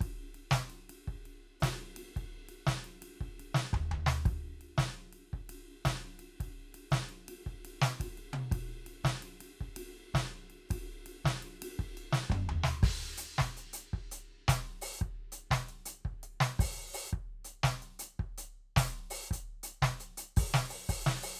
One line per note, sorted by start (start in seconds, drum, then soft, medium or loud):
0.01 kick medium
0.01 ride medium
0.35 ride medium
0.50 kick medium
0.50 snare loud
0.50 hi-hat pedal soft
0.70 ride medium
0.90 ride medium
1.08 kick medium
1.12 ride soft
1.26 ride soft
1.60 kick medium
1.60 snare loud
1.60 hi-hat pedal medium
1.60 ride loud
1.97 ride medium
2.17 kick medium
2.17 ride medium
2.49 ride medium
2.67 kick medium
2.67 snare loud
2.67 hi-hat pedal medium
2.85 ride medium
3.02 ride medium
3.21 kick medium
3.40 ride medium
3.55 snare loud
3.73 kick medium
3.73 floor tom loud
3.92 floor tom loud
4.07 snare loud
4.26 kick loud
4.26 ride medium
4.61 ride soft
4.78 kick medium
4.78 snare loud
4.78 hi-hat pedal medium
4.94 ride soft
5.13 ride medium
5.33 kick medium
5.33 crash soft
5.41 ride soft
5.50 ride medium
5.85 kick medium
5.85 snare loud
5.85 hi-hat pedal medium
5.85 ride medium
6.20 ride medium
6.37 kick medium
6.37 ride soft
6.41 ride medium
6.75 ride medium
6.91 kick medium
6.91 snare loud
6.91 hi-hat pedal medium
7.09 ride soft
7.29 ride medium
7.47 kick medium
7.65 ride medium
7.82 snare loud
8.00 kick medium
8.00 ride loud
8.18 ride medium
8.33 high tom loud
8.52 kick loud
8.52 ride loud
8.80 ride soft
8.87 ride medium
9.04 kick medium
9.04 snare loud
9.04 hi-hat pedal medium
9.23 ride medium
9.41 ride medium
9.58 kick medium
9.58 ride soft
9.77 ride loud
10.05 ride soft
10.14 kick medium
10.14 snare loud
10.14 ride medium
10.50 ride soft
10.69 kick medium
10.69 hi-hat pedal soft
10.69 ride loud
11.06 ride medium
11.25 kick medium
11.25 snare loud
11.43 ride medium
11.62 ride loud
11.79 kick medium
11.97 ride bell medium
12.13 snare loud
12.30 kick loud
12.30 mid tom loud
12.49 floor tom loud
12.64 snare loud
12.83 kick loud
12.83 hi-hat pedal medium
12.83 crash loud
13.18 closed hi-hat loud
13.39 kick medium
13.39 snare loud
13.57 closed hi-hat medium
13.73 closed hi-hat loud
13.94 kick medium
14.12 closed hi-hat loud
14.48 closed hi-hat loud
14.48 kick medium
14.48 snare loud
14.82 open hi-hat loud
14.99 kick medium
14.99 hi-hat pedal medium
15.32 closed hi-hat loud
15.51 kick medium
15.51 snare loud
15.69 closed hi-hat medium
15.86 closed hi-hat loud
16.05 kick medium
16.23 closed hi-hat medium
16.41 snare loud
16.60 open hi-hat loud
16.60 kick loud
16.94 open hi-hat loud
17.09 kick medium
17.09 hi-hat pedal medium
17.45 closed hi-hat loud
17.64 kick medium
17.64 snare loud
17.82 closed hi-hat medium
17.99 closed hi-hat loud
18.20 kick medium
18.38 closed hi-hat loud
18.77 open hi-hat loud
18.77 kick loud
18.77 snare loud
19.11 open hi-hat loud
19.28 kick medium
19.28 hi-hat pedal medium
19.33 closed hi-hat loud
19.64 closed hi-hat loud
19.82 kick medium
19.82 snare loud
20.00 closed hi-hat medium
20.18 closed hi-hat loud
20.37 open hi-hat loud
20.37 kick loud
20.54 snare loud
20.70 open hi-hat loud
20.89 open hi-hat loud
20.89 kick medium
21.07 snare loud
21.23 open hi-hat loud